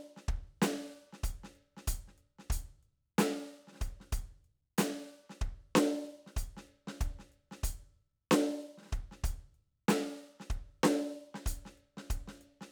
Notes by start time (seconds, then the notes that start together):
0.17 snare
0.29 kick, closed hi-hat
0.62 closed hi-hat, snare
0.92 closed hi-hat
1.13 snare
1.24 closed hi-hat, kick
1.44 snare
1.56 closed hi-hat
1.77 snare
1.88 closed hi-hat, kick
2.08 snare
2.18 closed hi-hat
2.39 snare
2.50 closed hi-hat, kick
2.83 closed hi-hat
3.19 closed hi-hat, snare
3.51 closed hi-hat
3.68 snare
3.72 snare
3.75 snare
3.80 closed hi-hat, kick, snare
4.01 snare
4.13 closed hi-hat, kick
4.45 closed hi-hat
4.78 closed hi-hat, snare
5.09 closed hi-hat
5.30 snare
5.42 kick, closed hi-hat
5.76 closed hi-hat, snare
6.04 snare
6.27 snare
6.37 closed hi-hat, kick
6.57 snare
6.68 closed hi-hat
6.88 snare
7.01 kick, closed hi-hat
7.19 snare
7.32 closed hi-hat
7.51 snare
7.64 closed hi-hat, kick
8.31 closed hi-hat, snare
8.61 snare, closed hi-hat
8.78 snare
8.82 snare
8.85 snare
8.93 kick, closed hi-hat
9.12 snare
9.24 closed hi-hat, kick
9.55 closed hi-hat
9.89 closed hi-hat, snare
10.21 closed hi-hat
10.40 snare
10.50 kick, closed hi-hat
10.84 snare, closed hi-hat
11.14 snare, closed hi-hat
11.35 snare
11.46 closed hi-hat, kick
11.66 snare
11.78 closed hi-hat
11.97 snare
12.10 kick, closed hi-hat
12.28 snare
12.41 closed hi-hat
12.61 snare